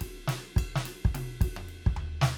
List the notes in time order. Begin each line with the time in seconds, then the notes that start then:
0.01 kick, ride
0.28 snare, ride
0.56 kick, ride bell
0.76 snare
0.86 ride
1.05 kick
1.15 high tom, ride
1.41 kick, ride
1.57 mid tom
1.69 ride
1.86 kick
1.96 floor tom
2.21 snare